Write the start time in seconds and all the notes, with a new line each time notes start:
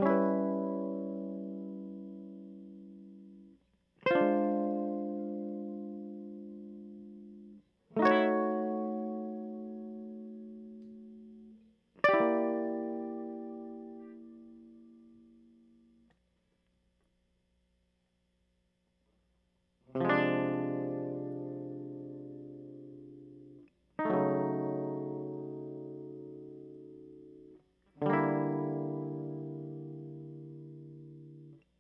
0.00 G3 C#4
0.06 E4
0.10 B4
4.07 C5
4.11 F4
4.16 D4
4.22 G#3
7.97 A3 D#4
8.03 F#4 C#5
12.04 D5
12.09 G4
12.14 E4
12.21 A#3
19.96 C3
20.01 F3
20.05 G#3
20.10 D4
23.99 D#4
24.06 A3
24.11 F#3
24.15 C#3
28.03 D3 G3
28.10 A#3 E4